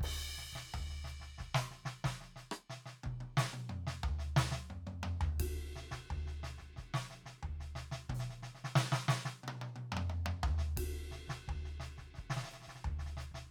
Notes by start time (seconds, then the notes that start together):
0.01 kick, crash
0.38 snare, hi-hat pedal
0.53 kick, snare
0.74 kick, floor tom
0.90 snare
1.04 snare, hi-hat pedal
1.20 kick, snare
1.38 kick, snare
1.55 snare
1.70 snare, hi-hat pedal
1.84 kick, snare
2.04 kick, snare
2.21 snare
2.36 snare, hi-hat pedal
2.52 cross-stick
2.70 snare
2.86 snare
3.04 kick, high tom
3.16 kick
3.21 high tom
3.37 snare
3.42 snare
3.53 high tom
3.70 mid tom
3.87 snare
4.04 floor tom
4.19 snare
4.37 snare
4.52 snare
4.70 mid tom
4.87 mid tom
5.03 mid tom
5.21 floor tom
5.40 kick, ride
5.44 hi-hat pedal
5.76 snare
5.91 kick, snare
6.11 kick, floor tom
6.27 snare
6.43 snare, hi-hat pedal
6.58 kick, snare
6.77 kick, snare
6.94 snare
7.09 snare, hi-hat pedal
7.24 kick, snare
7.43 kick, floor tom
7.60 snare
7.76 snare, hi-hat pedal
7.92 snare
8.10 kick, high tom
8.15 kick, hi-hat pedal
8.20 snare
8.30 snare
8.43 snare
8.55 snare
8.64 snare
8.76 snare
8.92 snare
9.09 snare
9.25 snare
9.44 high tom
9.48 high tom
9.62 high tom
9.76 high tom
9.92 mid tom
9.97 mid tom
10.10 mid tom
10.26 mid tom
10.43 floor tom
10.58 snare
10.77 kick, ride
11.12 snare
11.28 kick, snare
11.48 kick, floor tom
11.65 snare
11.80 snare
11.84 hi-hat pedal
11.98 kick, snare
12.14 snare
12.19 kick
12.30 snare
12.37 snare
12.43 snare
12.45 snare
12.51 snare, hi-hat pedal
12.60 snare
12.62 snare
12.67 kick, snare
12.75 snare
12.85 kick, floor tom
12.99 snare
13.06 snare
13.17 snare, hi-hat pedal
13.32 kick, snare